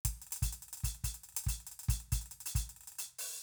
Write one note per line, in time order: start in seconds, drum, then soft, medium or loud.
0.04 kick medium
0.04 closed hi-hat loud
0.22 closed hi-hat medium
0.27 closed hi-hat soft
0.31 closed hi-hat soft
0.31 closed hi-hat loud
0.36 closed hi-hat medium
0.42 closed hi-hat loud
0.42 kick medium
0.53 closed hi-hat medium
0.62 closed hi-hat medium
0.68 closed hi-hat soft
0.73 closed hi-hat medium
0.77 closed hi-hat medium
0.81 kick medium
0.81 closed hi-hat soft
0.84 closed hi-hat loud
0.95 closed hi-hat soft
1.04 closed hi-hat loud
1.04 kick soft
1.14 closed hi-hat medium
1.24 closed hi-hat medium
1.29 closed hi-hat soft
1.33 kick soft
1.33 closed hi-hat soft
1.35 closed hi-hat soft
1.37 closed hi-hat loud
1.44 kick medium
1.44 closed hi-hat medium
1.49 closed hi-hat loud
1.60 closed hi-hat soft
1.67 closed hi-hat medium
1.72 closed hi-hat medium
1.79 closed hi-hat medium
1.83 closed hi-hat medium
1.89 closed hi-hat loud
1.89 kick medium
2.00 closed hi-hat soft
2.12 closed hi-hat loud
2.12 kick medium
2.21 closed hi-hat medium
2.26 closed hi-hat soft
2.31 closed hi-hat medium
2.41 closed hi-hat medium
2.46 closed hi-hat loud
2.55 closed hi-hat loud
2.55 kick medium
2.69 closed hi-hat medium
2.76 closed hi-hat soft
2.81 closed hi-hat soft
2.84 closed hi-hat soft
2.88 closed hi-hat medium
2.92 closed hi-hat soft
2.96 closed hi-hat soft
2.99 closed hi-hat loud
3.19 open hi-hat loud